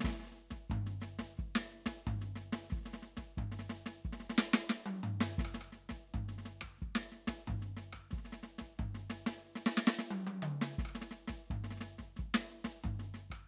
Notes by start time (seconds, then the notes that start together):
0.01 kick, snare
0.05 snare
0.09 snare
0.13 snare
0.20 snare
0.23 snare
0.27 snare
0.32 snare
0.38 snare, hi-hat pedal
0.51 kick, snare
0.70 kick, floor tom
0.87 snare
1.01 snare, hi-hat pedal
1.19 kick, snare
1.38 kick, snare
1.56 snare
1.70 snare, hi-hat pedal
1.86 kick, snare
2.07 kick, floor tom
2.22 snare
2.36 snare
2.41 hi-hat pedal
2.53 snare
2.70 kick, snare
2.78 snare
2.83 snare
2.86 snare
2.94 snare
3.03 snare, hi-hat pedal
3.17 kick, snare
3.38 kick, floor tom
3.52 snare
3.59 snare
3.68 snare, hi-hat pedal
3.86 snare
4.05 kick
4.13 snare
4.20 snare
4.30 snare
4.38 snare
4.54 snare
4.70 snare
4.86 high tom
5.04 floor tom
5.21 snare
5.39 kick, snare
5.45 cross-stick
5.50 kick, cross-stick
5.55 snare
5.61 cross-stick
5.73 snare
5.89 kick, snare
6.14 kick, floor tom
6.29 snare
6.39 snare
6.46 snare, hi-hat pedal
6.62 kick, cross-stick
6.78 snare
6.82 kick
6.96 snare
7.12 snare, hi-hat pedal
7.28 kick, snare
7.48 kick, floor tom
7.62 snare
7.77 snare
7.81 hi-hat pedal
7.93 kick, cross-stick
8.11 kick, snare
8.18 snare
8.24 snare
8.33 snare
8.43 snare
8.48 hi-hat pedal
8.59 kick, snare
8.79 kick, floor tom
8.95 snare
9.10 snare, hi-hat pedal
9.27 snare
9.45 snare, hi-hat pedal
9.56 snare
9.67 snare
9.78 snare
9.87 snare
9.99 snare
10.11 high tom
10.27 high tom
10.43 mid tom
10.62 snare
10.79 kick, snare
10.86 cross-stick
10.89 cross-stick
10.95 snare
11.02 snare
11.11 snare, hi-hat pedal
11.28 kick, snare
11.51 kick, floor tom
11.64 snare
11.71 snare
11.78 snare
11.81 snare, hi-hat pedal
11.99 kick, snare
12.17 kick, snare
12.35 snare
12.50 snare, hi-hat pedal
12.65 kick, snare
12.84 kick, floor tom
13.00 snare
13.14 snare, hi-hat pedal
13.31 kick, cross-stick